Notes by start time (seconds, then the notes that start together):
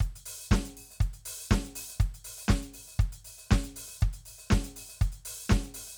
0.01 kick, closed hi-hat
0.16 closed hi-hat
0.26 open hi-hat
0.40 open hi-hat
0.47 hi-hat pedal
0.52 kick, snare
0.66 closed hi-hat
0.70 kick
0.78 open hi-hat
0.91 open hi-hat
0.96 hi-hat pedal
1.01 kick, closed hi-hat
1.14 closed hi-hat
1.26 open hi-hat
1.39 open hi-hat
1.48 hi-hat pedal
1.52 kick, snare
1.65 closed hi-hat
1.76 open hi-hat
1.89 open hi-hat
1.95 hi-hat pedal
2.01 kick, closed hi-hat
2.15 closed hi-hat
2.25 open hi-hat
2.38 open hi-hat
2.45 snare, hi-hat pedal
2.50 kick
2.63 closed hi-hat
2.74 open hi-hat
2.88 open hi-hat
2.96 kick, hi-hat pedal
3.01 closed hi-hat
3.13 closed hi-hat
3.25 open hi-hat
3.38 open hi-hat
3.48 kick, snare, hi-hat pedal
3.64 closed hi-hat
3.77 open hi-hat
3.88 open hi-hat
3.98 closed hi-hat, hi-hat pedal
4.03 kick
4.14 closed hi-hat
4.26 open hi-hat
4.39 open hi-hat
4.49 kick, snare, hi-hat pedal
4.64 closed hi-hat
4.77 open hi-hat
4.89 open hi-hat
4.99 closed hi-hat, kick, hi-hat pedal
5.13 closed hi-hat
5.26 open hi-hat
5.39 open hi-hat
5.47 snare, hi-hat pedal
5.52 kick
5.64 closed hi-hat
5.75 open hi-hat
5.88 open hi-hat